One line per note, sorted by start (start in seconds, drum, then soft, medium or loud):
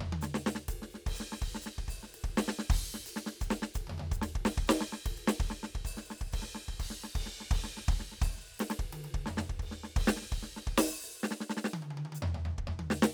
0.01 floor tom loud
0.13 high tom loud
0.22 snare medium
0.22 hi-hat pedal medium
0.35 snare medium
0.47 snare medium
0.55 snare medium
0.69 kick medium
0.69 hi-hat pedal medium
0.69 ride medium
0.82 snare soft
0.91 snare soft
0.91 hi-hat pedal soft
1.07 kick medium
1.07 crash medium
1.15 hi-hat pedal medium
1.20 snare medium
1.32 snare medium
1.32 hi-hat pedal soft
1.42 kick medium
1.42 crash medium
1.55 snare medium
1.62 hi-hat pedal medium
1.66 snare soft
1.78 kick medium
1.88 open hi-hat medium
1.88 kick medium
2.03 snare soft
2.15 ride medium
2.24 kick medium
2.38 snare loud
2.38 crash medium
2.48 snare medium
2.59 snare medium
2.70 kick loud
2.70 crash loud
2.94 snare soft
3.06 hi-hat pedal medium
3.06 ride medium
3.16 snare medium
3.16 ride soft
3.27 snare medium
3.27 ride soft
3.41 kick medium
3.41 hi-hat pedal medium
3.51 snare medium
3.51 ride soft
3.62 snare medium
3.74 kick medium
3.74 hi-hat pedal medium
3.74 ride medium
3.87 floor tom medium
3.87 high tom medium
3.98 floor tom medium
3.98 high tom medium
4.12 kick medium
4.12 hi-hat pedal medium
4.22 snare medium
4.22 ride medium
4.35 kick medium
4.45 snare loud
4.45 crash medium
4.58 kick medium
4.68 snare loud
4.68 crash medium
4.81 snare medium
4.93 snare medium
5.06 kick medium
5.06 ride medium
5.18 ride soft
5.28 snare loud
5.40 kick medium
5.40 crash medium
5.50 snare medium
5.63 snare medium
5.75 kick medium
5.85 open hi-hat medium
5.85 kick medium
5.97 snare soft
6.11 snare soft
6.21 kick medium
6.33 kick medium
6.33 crash medium
6.42 snare soft
6.55 kick soft
6.55 snare soft
6.68 kick medium
6.80 kick medium
6.80 crash medium
6.91 snare soft
7.04 snare soft
7.15 kick medium
7.15 ride medium
7.26 snare soft
7.41 snare soft
7.51 kick loud
7.51 crash medium
7.64 snare soft
7.77 snare soft
7.88 kick loud
7.88 crash medium
8.00 snare soft
8.12 snare soft
8.22 open hi-hat medium
8.22 kick loud
8.37 snare soft
8.60 snare medium
8.60 ride medium
8.70 snare medium
8.70 ride medium
8.79 kick medium
8.93 high tom medium
8.93 ride medium
9.04 high tom medium
9.04 ride soft
9.14 kick medium
9.26 snare medium
9.26 floor tom medium
9.38 snare medium
9.38 floor tom medium
9.50 kick medium
9.60 kick medium
9.60 ride medium
9.72 snare soft
9.84 snare soft
9.96 kick loud
9.96 crash medium
10.08 snare loud
10.17 snare soft
10.22 snare soft
10.32 kick medium
10.32 crash medium
10.43 snare soft
10.57 snare soft
10.67 kick medium
10.78 open hi-hat loud
10.78 snare loud
11.04 ride medium
11.24 snare medium
11.31 snare medium
11.41 snare medium
11.50 snare medium
11.57 snare medium
11.65 snare medium
11.69 hi-hat pedal soft
11.74 high tom loud
11.83 high tom medium
11.91 high tom medium
11.98 high tom medium
12.05 high tom medium
12.13 hi-hat pedal medium
12.13 high tom medium
12.23 floor tom loud
12.35 floor tom medium
12.46 floor tom medium
12.58 kick medium
12.67 floor tom medium
12.79 high tom medium
12.91 snare medium
13.03 snare loud